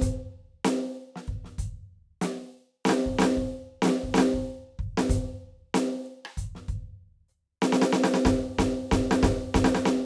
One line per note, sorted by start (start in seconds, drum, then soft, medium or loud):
0.01 closed hi-hat loud
0.01 kick loud
0.64 closed hi-hat loud
0.64 snare loud
1.16 snare medium
1.27 kick medium
1.27 closed hi-hat soft
1.44 snare soft
1.58 closed hi-hat medium
1.58 kick medium
2.21 closed hi-hat loud
2.21 snare loud
2.84 snare loud
2.84 hi-hat pedal medium
2.89 snare loud
3.06 kick medium
3.18 snare loud
3.22 snare loud
3.37 kick medium
3.82 snare loud
3.86 snare loud
4.03 kick medium
4.14 snare loud
4.18 snare loud
4.34 kick medium
4.44 hi-hat pedal soft
4.79 kick medium
4.79 snare soft
4.83 crash soft
4.83 ride soft
4.97 snare loud
5.09 closed hi-hat loud
5.09 kick loud
5.74 closed hi-hat loud
5.74 snare loud
6.06 closed hi-hat soft
6.25 cross-stick medium
6.37 closed hi-hat medium
6.37 kick medium
6.55 snare medium
6.68 closed hi-hat soft
6.68 kick medium
7.28 hi-hat pedal soft
7.61 snare loud
7.61 hi-hat pedal soft
7.72 snare loud
7.82 snare loud
7.90 snare loud
7.90 hi-hat pedal soft
8.03 snare loud
8.14 snare loud
8.25 kick medium
8.25 snare loud
8.58 kick medium
8.58 snare loud
8.58 hi-hat pedal soft
8.91 kick medium
8.91 snare loud
8.91 hi-hat pedal medium
9.11 snare loud
9.23 kick loud
9.23 snare loud
9.23 hi-hat pedal soft
9.54 kick medium
9.54 snare loud
9.54 hi-hat pedal medium
9.85 snare loud